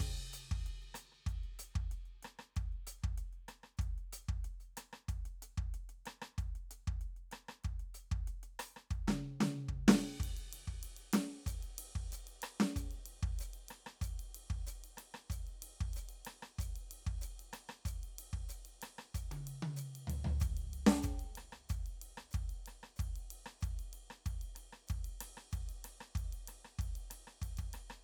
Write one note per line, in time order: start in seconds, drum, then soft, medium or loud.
0.01 kick medium
0.01 closed hi-hat soft
0.18 closed hi-hat soft
0.34 closed hi-hat medium
0.52 kick medium
0.52 snare soft
0.67 closed hi-hat soft
0.83 closed hi-hat soft
0.95 closed hi-hat medium
0.95 cross-stick medium
1.13 cross-stick soft
1.27 kick medium
1.27 closed hi-hat soft
1.44 closed hi-hat soft
1.60 closed hi-hat medium
1.75 kick medium
1.75 cross-stick soft
1.92 closed hi-hat soft
2.06 closed hi-hat soft
2.24 cross-stick medium
2.24 closed hi-hat soft
2.40 cross-stick medium
2.57 kick medium
2.57 closed hi-hat soft
2.73 closed hi-hat soft
2.88 closed hi-hat medium
3.03 kick medium
3.03 cross-stick soft
3.18 closed hi-hat soft
3.34 closed hi-hat soft
3.49 cross-stick medium
3.49 closed hi-hat soft
3.64 cross-stick soft
3.78 kick medium
3.78 hi-hat pedal soft
3.82 closed hi-hat soft
3.99 closed hi-hat soft
4.14 closed hi-hat medium
4.29 kick medium
4.45 closed hi-hat soft
4.61 closed hi-hat soft
4.78 cross-stick medium
4.78 closed hi-hat medium
4.94 cross-stick medium
5.09 kick medium
5.09 closed hi-hat soft
5.26 closed hi-hat soft
5.43 closed hi-hat medium
5.58 kick medium
5.75 closed hi-hat soft
5.90 closed hi-hat soft
6.07 cross-stick medium
6.07 closed hi-hat soft
6.23 cross-stick medium
6.39 kick medium
6.39 closed hi-hat soft
6.56 closed hi-hat soft
6.72 closed hi-hat medium
6.88 kick medium
7.02 closed hi-hat soft
7.17 closed hi-hat soft
7.32 cross-stick medium
7.32 closed hi-hat soft
7.49 cross-stick medium
7.65 kick medium
7.65 closed hi-hat soft
7.80 closed hi-hat soft
7.95 closed hi-hat medium
8.12 kick medium
8.28 closed hi-hat soft
8.44 closed hi-hat soft
8.60 cross-stick medium
8.60 open hi-hat medium
8.77 cross-stick medium
8.91 kick medium
8.91 hi-hat pedal soft
9.09 snare medium
9.09 high tom medium
9.41 snare medium
9.41 high tom medium
9.69 kick medium
9.89 snare loud
9.89 crash medium
10.21 kick medium
10.21 ride medium
10.38 ride soft
10.54 ride medium
10.68 kick soft
10.84 ride medium
10.97 ride soft
11.14 snare medium
11.14 ride medium
11.47 kick medium
11.47 hi-hat pedal medium
11.47 ride soft
11.64 ride soft
11.79 ride medium
11.96 kick medium
12.13 hi-hat pedal medium
12.13 ride soft
12.28 ride soft
12.43 cross-stick medium
12.43 ride medium
12.61 snare medium
12.77 kick medium
12.77 hi-hat pedal medium
12.77 ride soft
12.92 ride soft
13.07 ride medium
13.24 kick medium
13.40 hi-hat pedal medium
13.40 ride soft
13.54 ride soft
13.69 cross-stick medium
13.69 ride soft
13.87 cross-stick medium
14.02 kick medium
14.02 hi-hat pedal medium
14.02 ride soft
14.20 ride soft
14.36 ride medium
14.51 kick medium
14.68 hi-hat pedal medium
14.68 ride soft
14.85 ride soft
14.98 cross-stick medium
14.98 ride medium
15.15 cross-stick medium
15.31 kick medium
15.31 hi-hat pedal medium
15.31 ride soft
15.48 ride soft
15.63 ride medium
15.81 kick medium
15.94 hi-hat pedal medium
15.94 ride soft
16.10 ride soft
16.26 cross-stick medium
16.26 ride medium
16.43 cross-stick medium
16.59 kick medium
16.59 hi-hat pedal medium
16.59 ride soft
16.77 ride soft
16.92 ride medium
17.07 kick medium
17.22 hi-hat pedal medium
17.22 ride soft
17.40 ride soft
17.54 cross-stick medium
17.54 ride soft
17.70 cross-stick medium
17.86 kick medium
17.86 hi-hat pedal medium
17.86 ride soft
18.04 ride soft
18.19 ride medium
18.34 kick medium
18.50 hi-hat pedal medium
18.50 ride soft
18.66 ride soft
18.83 cross-stick medium
18.83 ride medium
18.99 cross-stick medium
19.15 kick medium
19.15 hi-hat pedal medium
19.15 ride soft
19.32 high tom medium
19.32 ride soft
19.48 ride medium
19.63 high tom medium
19.77 hi-hat pedal medium
19.77 ride soft
19.96 ride soft
20.08 floor tom medium
20.08 ride medium
20.25 floor tom medium
20.41 kick medium
20.41 hi-hat pedal medium
20.41 ride soft
20.58 ride soft
20.74 ride soft
20.87 snare loud
21.03 kick medium
21.03 hi-hat pedal medium
21.03 ride soft
21.20 ride soft
21.36 cross-stick medium
21.36 ride soft
21.53 cross-stick medium
21.70 kick medium
21.70 hi-hat pedal medium
21.70 ride soft
21.87 ride soft
22.03 ride medium
22.18 cross-stick medium
22.32 kick medium
22.32 hi-hat pedal soft
22.32 ride soft
22.50 ride soft
22.67 cross-stick soft
22.67 ride soft
22.84 cross-stick medium
22.97 kick medium
22.97 hi-hat pedal soft
23.01 ride soft
23.17 ride soft
23.31 ride medium
23.47 cross-stick medium
23.62 kick medium
23.62 hi-hat pedal soft
23.62 ride soft
23.80 ride soft
23.94 cross-stick soft
23.94 ride soft
24.11 cross-stick medium
24.26 kick medium
24.26 hi-hat pedal soft
24.26 ride soft
24.42 ride soft
24.56 cross-stick soft
24.56 ride soft
24.74 cross-stick soft
24.88 kick medium
24.88 hi-hat pedal soft
24.88 ride soft
25.05 ride soft
25.22 cross-stick medium
25.22 ride medium
25.38 cross-stick medium
25.52 kick medium
25.52 hi-hat pedal soft
25.52 ride soft
25.70 ride soft
25.85 cross-stick soft
25.85 ride medium
26.01 cross-stick medium
26.16 kick medium
26.16 hi-hat pedal soft
26.16 ride soft
26.34 ride soft
26.49 cross-stick soft
26.49 ride medium
26.66 cross-stick soft
26.80 kick medium
26.80 hi-hat pedal soft
26.80 ride soft
26.96 ride soft
27.11 cross-stick soft
27.11 ride medium
27.28 cross-stick soft
27.43 kick soft
27.43 hi-hat pedal soft
27.43 ride soft
27.58 kick soft
27.58 ride soft
27.74 cross-stick soft
27.74 ride soft
27.91 cross-stick medium